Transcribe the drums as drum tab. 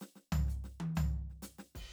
RD |-----------x|
HH |p--p-xp--p--|
SD |gg-gg---ggg-|
T1 |-----o------|
FT |--o---o-----|
BD |-----------g|